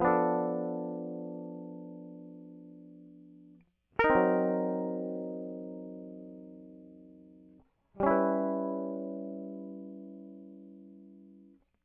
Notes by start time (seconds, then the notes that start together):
0.00 F3 B3
0.06 D4 A4
4.00 A#4
4.05 D#4
4.11 C4
4.17 F#3
8.01 G3 C#4
8.07 E4
8.11 B4